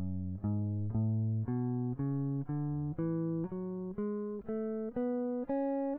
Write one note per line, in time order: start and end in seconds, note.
0.00 0.42 G2
0.46 0.95 G#2
0.97 1.47 A2
1.50 1.97 B2
2.02 2.46 C#3
2.51 2.96 D3
3.01 3.49 E3
3.49 3.85 F#3
3.99 4.44 G#3
4.48 4.92 A3
4.97 5.47 B3
5.50 5.99 C#4